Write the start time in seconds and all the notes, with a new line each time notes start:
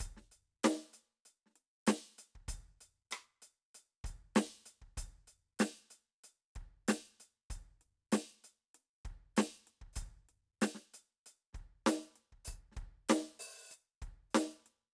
0.00 closed hi-hat, kick
0.05 kick
0.17 snare
0.31 closed hi-hat
0.63 closed hi-hat, snare
0.93 closed hi-hat
1.25 closed hi-hat
1.46 snare
1.49 snare
1.55 closed hi-hat
1.87 closed hi-hat, snare
2.18 closed hi-hat
2.35 kick
2.48 closed hi-hat, kick
2.80 closed hi-hat
3.11 closed hi-hat, cross-stick
3.42 closed hi-hat
3.74 closed hi-hat
4.04 closed hi-hat, kick
4.35 closed hi-hat, snare
4.65 closed hi-hat
4.81 kick
4.97 closed hi-hat, kick
5.27 closed hi-hat
5.59 closed hi-hat, snare
5.90 closed hi-hat
6.24 closed hi-hat
6.55 kick, closed hi-hat
6.88 closed hi-hat, snare
7.20 closed hi-hat
7.50 closed hi-hat, kick
7.81 closed hi-hat
8.12 closed hi-hat, snare
8.44 closed hi-hat
8.74 closed hi-hat
9.05 kick, closed hi-hat
9.36 closed hi-hat, snare
9.67 closed hi-hat
9.81 kick
9.93 closed hi-hat, kick, hi-hat pedal
10.02 kick
10.06 kick
10.29 closed hi-hat
10.61 closed hi-hat, snare
10.74 snare
10.94 closed hi-hat
11.26 closed hi-hat
11.53 kick, snare, closed hi-hat
11.86 open hi-hat, snare, hi-hat pedal
12.15 open hi-hat
12.32 kick
12.45 open hi-hat, kick, hi-hat pedal
12.71 snare
12.76 kick, closed hi-hat
13.09 closed hi-hat, snare
13.39 open hi-hat
13.70 hi-hat pedal
14.02 kick, closed hi-hat
14.30 hi-hat pedal
14.34 closed hi-hat, snare
14.66 closed hi-hat